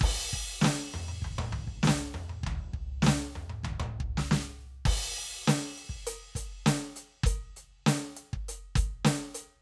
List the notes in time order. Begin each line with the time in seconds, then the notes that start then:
0.01 kick, crash
0.33 kick
0.61 snare
0.65 snare
0.94 mid tom
1.08 high tom
1.22 kick, floor tom
1.38 high tom
1.53 floor tom
1.68 kick
1.83 snare
1.87 snare
2.14 mid tom
2.29 high tom
2.43 kick, floor tom
2.73 kick
3.02 snare
3.07 snare
3.35 mid tom
3.50 high tom
3.64 kick, floor tom
3.80 high tom
4.00 kick
4.17 snare
4.31 snare
4.85 kick, crash
5.15 open hi-hat
5.48 closed hi-hat, snare
5.78 closed hi-hat
5.89 kick
6.07 closed hi-hat
6.35 closed hi-hat, kick
6.66 closed hi-hat, snare
6.96 closed hi-hat
7.24 closed hi-hat, kick
7.56 closed hi-hat
7.86 closed hi-hat, snare
8.17 closed hi-hat
8.33 kick
8.48 closed hi-hat
8.76 closed hi-hat, kick
9.05 closed hi-hat, snare
9.35 closed hi-hat